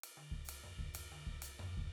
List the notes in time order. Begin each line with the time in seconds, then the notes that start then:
0.03 ride
0.17 high tom
0.31 kick
0.45 hi-hat pedal, ride
0.64 floor tom
0.79 kick
0.94 hi-hat pedal, ride
1.12 high tom
1.27 kick
1.42 hi-hat pedal, ride
1.59 floor tom
1.77 kick